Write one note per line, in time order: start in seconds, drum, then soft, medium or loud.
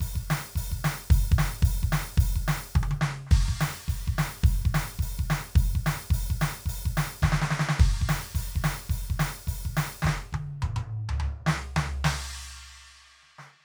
0.01 open hi-hat loud
0.01 kick medium
0.16 kick medium
0.31 open hi-hat loud
0.31 snare loud
0.56 open hi-hat loud
0.56 kick medium
0.72 kick medium
0.85 open hi-hat loud
0.85 snare loud
1.11 open hi-hat loud
1.11 kick loud
1.32 kick loud
1.39 open hi-hat loud
1.39 snare loud
1.63 open hi-hat loud
1.63 kick loud
1.83 kick medium
1.93 open hi-hat loud
1.93 snare loud
2.18 open hi-hat loud
2.18 kick loud
2.36 kick medium
2.48 open hi-hat loud
2.48 snare loud
2.76 kick loud
2.76 high tom loud
2.83 high tom loud
2.91 high tom loud
3.02 snare loud
3.27 snare soft
3.31 kick loud
3.31 crash loud
3.49 kick medium
3.61 open hi-hat loud
3.61 snare loud
3.88 open hi-hat medium
3.88 kick medium
4.08 kick medium
4.19 open hi-hat loud
4.19 snare loud
4.44 open hi-hat loud
4.44 kick loud
4.66 kick medium
4.75 open hi-hat loud
4.75 snare loud
4.99 open hi-hat loud
4.99 kick medium
5.19 kick medium
5.30 open hi-hat loud
5.30 snare loud
5.56 open hi-hat loud
5.56 kick loud
5.75 kick medium
5.87 open hi-hat loud
5.87 snare loud
6.11 open hi-hat loud
6.11 kick loud
6.30 kick medium
6.41 open hi-hat loud
6.41 snare loud
6.66 open hi-hat loud
6.66 kick medium
6.86 kick medium
6.97 open hi-hat loud
6.97 snare loud
7.23 kick medium
7.23 snare loud
7.33 snare loud
7.42 snare loud
7.51 snare loud
7.60 snare loud
7.69 snare loud
7.80 kick loud
7.80 crash loud
8.02 kick medium
8.09 open hi-hat loud
8.09 snare loud
8.35 open hi-hat loud
8.35 kick medium
8.56 kick medium
8.64 open hi-hat loud
8.64 snare loud
8.90 open hi-hat loud
8.90 kick medium
9.10 kick medium
9.20 open hi-hat loud
9.20 snare loud
9.48 open hi-hat loud
9.48 kick medium
9.65 kick medium
9.77 open hi-hat loud
9.77 snare loud
10.03 kick medium
10.03 snare loud
10.07 snare loud
10.33 kick medium
10.33 high tom loud
10.60 kick medium
10.60 hi-hat pedal soft
10.60 mid tom loud
10.77 mid tom loud
11.09 floor tom loud
11.20 floor tom loud
11.47 snare loud
11.49 snare loud
11.77 snare loud
11.77 floor tom loud
12.05 snare loud
12.05 crash loud
13.23 snare soft
13.39 snare soft
13.60 snare soft